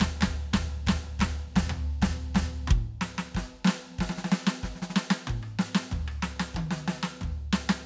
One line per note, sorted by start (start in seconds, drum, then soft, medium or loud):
0.05 kick soft
0.05 snare loud
0.05 floor tom loud
0.21 snare loud
0.21 floor tom loud
0.25 kick soft
0.53 kick medium
0.53 snare loud
0.53 floor tom loud
0.87 kick soft
0.87 snare loud
0.87 floor tom loud
1.19 kick medium
1.19 snare loud
1.19 floor tom loud
1.56 kick medium
1.56 snare loud
1.56 floor tom loud
1.69 cross-stick medium
1.69 floor tom loud
2.02 kick medium
2.02 snare loud
2.02 floor tom loud
2.34 kick medium
2.34 snare loud
2.34 floor tom loud
2.66 kick soft
2.66 mid tom loud
2.71 kick loud
3.01 snare loud
3.18 snare medium
3.35 kick medium
3.35 snare medium
3.65 snare loud
3.67 snare loud
3.98 kick medium
3.98 snare loud
4.05 hi-hat pedal soft
4.09 snare medium
4.18 snare medium
4.24 snare medium
4.32 snare loud
4.47 snare loud
4.63 kick soft
4.63 snare medium
4.75 snare soft
4.82 snare medium
4.90 snare medium
4.96 snare loud
5.10 snare loud
5.27 kick medium
5.27 mid tom loud
5.43 cross-stick medium
5.59 snare loud
5.75 snare loud
5.91 kick medium
5.91 floor tom loud
6.08 cross-stick medium
6.22 snare loud
6.40 snare loud
6.54 kick soft
6.54 high tom loud
6.71 snare loud
6.88 snare loud
7.03 snare loud
7.21 kick soft
7.21 floor tom loud
7.53 snare loud
7.53 hi-hat pedal soft
7.69 snare loud